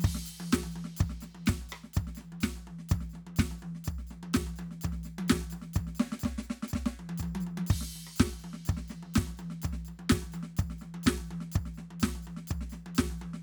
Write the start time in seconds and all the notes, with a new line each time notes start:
0.01 kick, percussion, crash
0.15 snare
0.26 percussion
0.40 high tom
0.53 kick, snare, percussion
0.64 high tom
0.71 percussion
0.76 high tom
0.85 snare
0.97 kick, high tom, percussion
1.10 snare
1.21 snare, high tom, percussion
1.35 high tom
1.47 kick, snare, percussion
1.62 high tom
1.70 high tom, percussion
1.84 snare
1.94 kick, percussion
1.98 high tom
2.08 snare
2.16 percussion
2.21 high tom
2.33 high tom
2.41 kick, snare, percussion
2.56 high tom
2.68 high tom
2.79 snare
2.89 kick, high tom, percussion
3.01 snare
3.10 snare, percussion
3.16 high tom
3.27 high tom
3.37 kick, snare, percussion
3.51 high tom
3.59 percussion
3.63 high tom
3.75 snare
3.85 kick, high tom, percussion
3.99 snare
4.07 snare, high tom, percussion
4.23 high tom
4.34 kick, snare, percussion
4.47 high tom
4.57 high tom, percussion
4.71 snare
4.82 kick, high tom, percussion
4.93 snare
5.04 snare, percussion
5.19 high tom
5.29 kick, snare, percussion
5.36 snare
5.42 high tom
5.51 high tom, percussion
5.62 snare
5.74 kick, high tom, percussion
5.87 snare
5.96 percussion
6.00 snare
6.12 snare
6.20 percussion
6.24 kick, snare
6.38 snare
6.43 percussion
6.50 snare
6.63 snare
6.69 percussion
6.74 kick, snare
6.86 snare
7.00 high tom
7.18 kick, percussion
7.23 high tom
7.36 high tom
7.41 percussion
7.47 high tom
7.58 high tom
7.67 kick, percussion, crash
7.81 snare
7.90 percussion
7.96 high tom
8.07 high tom
8.17 kick, snare, percussion
8.27 snare
8.33 high tom
8.40 percussion
8.45 high tom
8.54 snare
8.66 kick, high tom, percussion
8.77 snare
8.88 snare, high tom, percussion
9.03 high tom
9.14 kick, snare, percussion
9.28 high tom
9.38 high tom, percussion
9.51 snare
9.62 kick, high tom, percussion
9.73 snare
9.85 high tom, percussion
10.00 high tom
10.10 kick, snare, percussion
10.22 high tom
10.33 high tom, percussion
10.43 snare
10.57 kick, high tom, percussion
10.71 snare
10.79 snare, high tom, percussion
10.95 high tom
11.04 kick, snare, percussion
11.18 high tom
11.26 percussion
11.31 high tom
11.41 snare
11.52 kick, high tom, percussion
11.66 snare
11.75 snare, percussion
11.79 high tom
11.91 high tom
12.00 kick, snare, percussion
12.09 cross-stick
12.16 high tom
12.23 percussion
12.28 high tom
12.37 snare
12.48 kick, high tom, percussion
12.61 snare
12.70 snare, high tom, percussion
12.87 high tom
12.95 snare, percussion
13.00 kick
13.11 high tom
13.18 percussion
13.22 high tom
13.34 snare